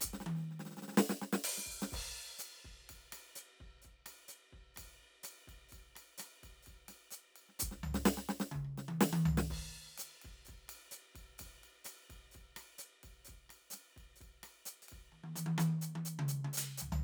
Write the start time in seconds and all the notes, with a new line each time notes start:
0.01 kick, hi-hat pedal, ride
0.14 snare
0.21 snare
0.26 high tom
0.35 snare
0.39 snare
0.42 snare
0.51 snare
0.60 snare
0.66 snare
0.71 snare
0.77 snare
0.83 snare
0.88 snare
0.93 snare
0.98 snare
1.10 snare
1.22 snare
1.33 snare
1.44 closed hi-hat
1.58 snare
1.66 kick
1.82 snare
1.92 kick, crash
1.98 kick
2.39 hi-hat pedal, ride
2.65 kick
2.89 kick, ride
3.12 cross-stick, snare, ride
3.36 hi-hat pedal
3.60 kick, ride
3.82 kick, hi-hat pedal, ride
4.06 cross-stick, snare, ride
4.28 hi-hat pedal
4.53 kick
4.75 kick, cross-stick, hi-hat pedal, ride
5.24 cross-stick, hi-hat pedal, ride
5.48 kick, ride
5.69 kick, hi-hat pedal, ride
5.96 cross-stick, ride
6.18 cross-stick, snare, hi-hat pedal, ride
6.43 kick, ride
6.63 hi-hat pedal, ride
6.67 kick
6.88 snare, ride
7.11 hi-hat pedal, ride
7.36 ride
7.49 snare
7.60 kick, hi-hat pedal, ride
7.69 kick, snare
7.84 floor tom
7.95 snare
8.06 snare
8.18 snare
8.29 snare
8.40 snare
8.52 kick, mid tom
8.60 kick
8.65 cross-stick
8.78 snare
8.88 high tom
9.01 snare
9.13 high tom
9.26 floor tom
9.38 snare
9.50 kick, cross-stick, crash
9.56 kick
9.98 hi-hat pedal, ride
10.22 kick, ride
10.45 kick, hi-hat pedal, ride
10.54 kick
10.69 cross-stick, ride
10.91 hi-hat pedal, ride
11.15 kick, ride
11.38 kick, snare, hi-hat pedal, ride
11.45 kick
11.64 ride
11.85 cross-stick, hi-hat pedal, ride
12.10 kick, ride
12.31 kick, hi-hat pedal, ride
12.56 cross-stick, snare, ride
12.79 hi-hat pedal, ride
13.03 kick, ride
13.25 kick, hi-hat pedal, ride
13.33 kick
13.49 cross-stick, snare, ride
13.71 snare, hi-hat pedal, ride
13.97 kick, ride
14.16 hi-hat pedal
14.21 kick, ride
14.43 cross-stick, ride
14.66 hi-hat pedal, ride
14.82 closed hi-hat
14.89 kick, ride
14.97 kick
15.12 high tom
15.24 high tom
15.36 hi-hat pedal, high tom
15.46 high tom
15.58 hi-hat pedal, high tom
15.82 hi-hat pedal, high tom
15.96 high tom
16.05 hi-hat pedal
16.19 mid tom
16.28 hi-hat pedal
16.45 mid tom
16.53 hi-hat pedal
16.58 closed hi-hat
16.78 hi-hat pedal
16.82 floor tom
16.92 floor tom